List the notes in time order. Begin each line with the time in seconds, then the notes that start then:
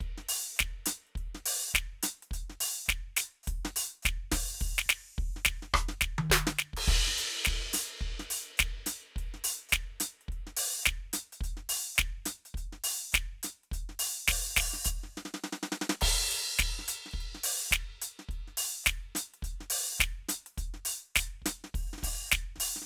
0.01 kick, closed hi-hat
0.18 snare
0.29 open hi-hat
0.56 snare, hi-hat pedal
0.61 kick
0.86 closed hi-hat, snare
1.07 closed hi-hat
1.16 kick, closed hi-hat
1.35 snare
1.46 open hi-hat
1.71 kick, hi-hat pedal
1.75 snare
2.03 closed hi-hat, snare
2.23 closed hi-hat
2.31 closed hi-hat, kick
2.50 snare
2.61 open hi-hat
2.86 kick, snare, hi-hat pedal
3.17 closed hi-hat, snare
3.44 hi-hat pedal
3.48 kick, closed hi-hat
3.65 snare
3.76 open hi-hat
4.03 kick, snare, hi-hat pedal
4.32 open hi-hat, kick, snare
4.61 kick, open hi-hat
4.78 snare
4.86 kick, snare
5.18 kick
5.37 snare
5.45 kick, snare
5.63 snare
5.74 kick, cross-stick, hi-hat pedal
5.89 snare
6.01 kick, snare
6.19 high tom
6.30 kick, snare
6.47 snare
6.59 snare
6.74 kick, crash
6.88 kick, ride
7.08 snare
7.18 closed hi-hat
7.45 kick, snare, hi-hat pedal
7.74 open hi-hat, snare
7.97 hi-hat pedal
8.01 kick, closed hi-hat
8.20 snare
8.31 open hi-hat
8.58 kick, snare, hi-hat pedal
8.87 open hi-hat, snare
9.16 kick, closed hi-hat
9.34 snare
9.44 open hi-hat
9.69 kick, snare, hi-hat pedal
10.00 open hi-hat, snare
10.21 closed hi-hat
10.29 kick, closed hi-hat
10.47 snare
10.57 open hi-hat
10.83 snare, hi-hat pedal
10.87 kick
11.13 closed hi-hat, snare
11.33 closed hi-hat
11.41 closed hi-hat, kick
11.57 snare
11.69 open hi-hat
11.96 kick, snare, hi-hat pedal
12.26 closed hi-hat, snare
12.45 closed hi-hat
12.55 closed hi-hat, kick
12.73 snare
12.84 open hi-hat
13.13 kick, snare, hi-hat pedal
13.43 closed hi-hat, snare
13.64 closed hi-hat
13.72 closed hi-hat, kick
13.89 snare
14.00 open hi-hat
14.28 open hi-hat, kick, snare
14.57 open hi-hat, kick, snare
14.74 snare
14.85 open hi-hat, kick, hi-hat pedal
15.04 snare
15.10 kick
15.18 snare
15.26 snare
15.34 snare
15.44 snare
15.53 snare
15.63 snare
15.72 snare
15.82 snare
15.90 snare
16.01 kick, crash
16.31 open hi-hat
16.57 kick, snare, closed hi-hat, hi-hat pedal
16.79 snare
16.88 closed hi-hat
17.06 snare
17.12 kick, closed hi-hat
17.21 closed hi-hat
17.35 snare
17.44 open hi-hat
17.71 kick, snare, hi-hat pedal
18.02 closed hi-hat
18.19 snare
18.29 kick, closed hi-hat
18.48 snare
18.58 open hi-hat
18.84 kick, snare, hi-hat pedal
18.89 closed hi-hat
19.15 closed hi-hat, snare
19.34 closed hi-hat
19.43 closed hi-hat, kick
19.61 snare
19.70 open hi-hat
19.99 kick, snare, closed hi-hat, hi-hat pedal
20.23 kick
20.29 closed hi-hat, snare
20.47 closed hi-hat
20.58 closed hi-hat, kick
20.74 snare
20.85 open hi-hat
21.15 closed hi-hat, kick, snare, hi-hat pedal
21.42 closed hi-hat, kick, snare
21.64 snare
21.75 kick, open hi-hat
21.93 snare
21.98 snare
22.03 open hi-hat, kick, snare
22.07 snare
22.29 closed hi-hat, snare, hi-hat pedal
22.33 kick
22.56 kick, snare
22.60 open hi-hat
22.76 snare
22.82 snare